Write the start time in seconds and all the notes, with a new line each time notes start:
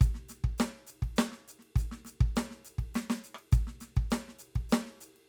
0.01 kick, hi-hat pedal, ride
0.14 snare
0.29 snare, hi-hat pedal, ride
0.44 kick, ride
0.58 snare, hi-hat pedal, ride
0.87 hi-hat pedal, ride
1.02 kick, ride
1.16 snare, hi-hat pedal, ride
1.32 snare
1.48 hi-hat pedal, ride
1.59 snare, ride
1.76 kick, hi-hat pedal, ride
1.92 snare
2.05 snare, hi-hat pedal, ride
2.21 kick, ride
2.36 snare, hi-hat pedal, ride
2.51 snare
2.65 hi-hat pedal, ride
2.79 kick, ride
2.94 snare, hi-hat pedal, ride
3.10 snare
3.24 hi-hat pedal, ride
3.35 cross-stick
3.39 ride
3.52 kick, hi-hat pedal, ride
3.67 snare
3.81 snare, hi-hat pedal, ride
3.97 kick, ride
4.11 snare, hi-hat pedal, ride
4.28 snare
4.39 hi-hat pedal, ride
4.56 kick, ride
4.69 snare, hi-hat pedal, ride
4.86 snare
5.01 hi-hat pedal, ride
5.16 ride